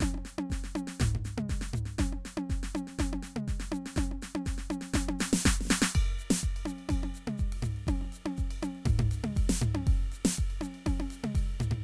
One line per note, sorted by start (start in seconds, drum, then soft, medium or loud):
0.01 kick medium
0.01 snare medium
0.01 hi-hat pedal medium
0.01 high tom loud
0.15 high tom medium
0.18 high tom soft
0.26 snare soft
0.26 hi-hat pedal medium
0.39 high tom loud
0.50 kick soft
0.50 snare soft
0.50 hi-hat pedal medium
0.64 snare soft
0.76 hi-hat pedal medium
0.76 high tom loud
0.88 snare soft
1.00 kick soft
1.00 snare medium
1.00 floor tom loud
1.00 hi-hat pedal medium
1.15 floor tom medium
1.25 snare soft
1.25 hi-hat pedal medium
1.38 mid tom loud
1.49 kick medium
1.49 snare soft
1.49 hi-hat pedal medium
1.62 snare medium
1.74 floor tom loud
1.74 hi-hat pedal medium
1.86 snare soft
1.99 kick medium
1.99 snare medium
1.99 hi-hat pedal medium
1.99 high tom loud
2.13 high tom medium
2.26 snare soft
2.26 hi-hat pedal medium
2.38 high tom loud
2.50 kick medium
2.50 snare soft
2.50 hi-hat pedal medium
2.64 snare soft
2.76 hi-hat pedal medium
2.76 high tom loud
2.88 snare soft
2.99 kick medium
2.99 snare medium
2.99 hi-hat pedal medium
2.99 high tom loud
3.14 high tom loud
3.23 snare soft
3.23 hi-hat pedal medium
3.37 mid tom loud
3.48 kick medium
3.48 snare soft
3.48 hi-hat pedal medium
3.60 snare soft
3.72 hi-hat pedal medium
3.72 high tom loud
3.86 snare soft
3.97 kick medium
3.97 snare medium
3.97 hi-hat pedal soft
3.97 high tom loud
4.12 high tom medium
4.22 snare soft
4.22 hi-hat pedal medium
4.36 high tom loud
4.46 kick soft
4.46 snare soft
4.46 hi-hat pedal medium
4.59 snare soft
4.71 hi-hat pedal medium
4.71 high tom loud
4.82 snare soft
4.94 kick medium
4.94 snare medium
4.94 hi-hat pedal medium
4.94 high tom loud
5.09 high tom loud
5.19 snare loud
5.19 hi-hat pedal medium
5.34 snare loud
5.43 kick medium
5.43 snare loud
5.43 hi-hat pedal medium
5.61 snare medium
5.66 snare soft
5.68 snare soft
5.68 hi-hat pedal medium
5.71 snare loud
5.82 snare loud
5.93 kick medium
5.93 hi-hat pedal soft
5.93 ride bell loud
6.19 hi-hat pedal medium
6.31 snare loud
6.42 kick medium
6.42 hi-hat pedal medium
6.42 ride bell medium
6.57 ride bell medium
6.66 hi-hat pedal loud
6.66 high tom loud
6.79 ride bell soft
6.89 kick medium
6.89 hi-hat pedal medium
6.89 high tom loud
6.89 ride bell medium
7.04 high tom medium
7.15 hi-hat pedal medium
7.15 ride soft
7.28 mid tom loud
7.38 kick medium
7.38 hi-hat pedal medium
7.38 ride medium
7.53 ride loud
7.63 floor tom loud
7.63 hi-hat pedal medium
7.77 ride soft
7.88 kick medium
7.88 hi-hat pedal medium
7.88 high tom loud
7.88 ride loud
8.02 high tom soft
8.05 high tom soft
8.13 hi-hat pedal medium
8.13 ride medium
8.26 high tom loud
8.37 kick medium
8.37 hi-hat pedal medium
8.37 ride medium
8.51 ride bell medium
8.63 hi-hat pedal medium
8.63 high tom loud
8.76 ride soft
8.86 kick medium
8.86 floor tom loud
8.86 hi-hat pedal medium
8.86 ride loud
8.99 floor tom loud
9.11 hi-hat pedal medium
9.11 ride loud
9.24 mid tom loud
9.36 kick medium
9.36 hi-hat pedal medium
9.36 ride loud
9.50 snare loud
9.61 kick soft
9.61 floor tom loud
9.61 hi-hat pedal medium
9.75 high tom loud
9.86 kick medium
9.86 hi-hat pedal soft
9.86 ride loud
10.12 hi-hat pedal medium
10.12 ride medium
10.26 snare loud
10.37 kick medium
10.37 hi-hat pedal medium
10.37 ride loud
10.51 ride bell soft
10.62 hi-hat pedal loud
10.62 high tom loud
10.75 ride bell soft
10.87 kick medium
10.87 hi-hat pedal medium
10.87 high tom loud
10.87 ride loud
11.00 high tom loud
11.11 hi-hat pedal medium
11.11 ride loud
11.24 mid tom loud
11.35 kick medium
11.35 hi-hat pedal medium
11.35 ride loud
11.61 floor tom loud
11.61 hi-hat pedal medium
11.72 floor tom loud